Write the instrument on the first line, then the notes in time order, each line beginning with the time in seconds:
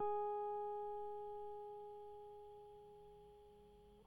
electric guitar
0.00 G#4